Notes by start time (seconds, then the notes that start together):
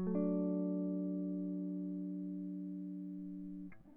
0.00 F#3
0.07 A3
0.15 D4